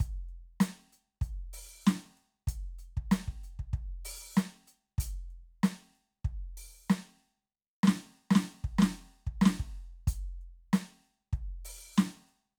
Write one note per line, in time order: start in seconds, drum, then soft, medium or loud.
0.00 closed hi-hat medium
0.00 kick medium
0.29 closed hi-hat soft
0.61 closed hi-hat loud
0.61 snare loud
0.93 closed hi-hat soft
1.22 closed hi-hat soft
1.22 kick medium
1.54 open hi-hat loud
1.86 closed hi-hat medium
1.86 snare loud
1.86 hi-hat pedal medium
2.18 closed hi-hat soft
2.48 kick medium
2.48 closed hi-hat loud
2.79 closed hi-hat soft
2.97 kick medium
3.12 closed hi-hat medium
3.12 snare loud
3.28 kick medium
3.44 closed hi-hat soft
3.59 kick soft
3.74 kick medium
3.74 closed hi-hat soft
4.05 open hi-hat loud
4.37 closed hi-hat medium
4.37 snare loud
4.37 hi-hat pedal medium
4.68 closed hi-hat soft
4.98 closed hi-hat loud
4.98 kick medium
5.31 closed hi-hat soft
5.64 closed hi-hat medium
5.64 snare loud
5.96 closed hi-hat soft
6.25 kick medium
6.25 closed hi-hat soft
6.58 open hi-hat medium
6.90 open hi-hat medium
6.90 snare loud
6.90 hi-hat pedal medium
7.84 snare loud
7.88 snare loud
8.31 snare loud
8.36 snare loud
8.64 kick medium
8.79 snare loud
8.82 snare loud
9.27 kick medium
9.42 snare loud
9.46 snare loud
9.60 kick medium
10.08 closed hi-hat loud
10.08 kick medium
10.42 closed hi-hat soft
10.73 closed hi-hat medium
10.73 snare loud
11.05 closed hi-hat soft
11.33 kick medium
11.33 closed hi-hat soft
11.65 open hi-hat loud
11.97 snare loud
11.97 closed hi-hat soft
11.97 hi-hat pedal medium
12.29 closed hi-hat soft